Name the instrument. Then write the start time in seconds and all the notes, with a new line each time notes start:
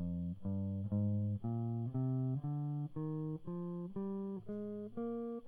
electric guitar
0.00 F2
0.47 G2
0.94 G#2
1.46 A#2
1.89 B2
1.96 C3
2.46 D3
2.98 D#3
3.49 F3
3.97 G3
4.50 G#3
4.98 A#3